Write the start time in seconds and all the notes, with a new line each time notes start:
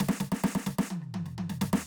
0.00 snare
0.09 snare
0.21 snare
0.32 snare
0.44 snare
0.55 snare
0.67 snare
0.79 snare
0.91 high tom
1.02 cross-stick
1.15 high tom
1.26 snare
1.38 high tom
1.50 snare
1.62 snare
1.73 snare